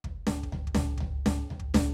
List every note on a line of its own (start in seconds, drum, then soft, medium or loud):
0.04 kick medium
0.04 floor tom medium
0.27 snare medium
0.27 floor tom medium
0.43 kick medium
0.53 floor tom loud
0.67 kick medium
0.75 snare loud
0.75 floor tom loud
0.98 kick medium
0.98 floor tom loud
1.26 snare loud
1.26 floor tom loud
1.50 floor tom medium
1.60 kick medium
1.74 snare loud
1.74 floor tom loud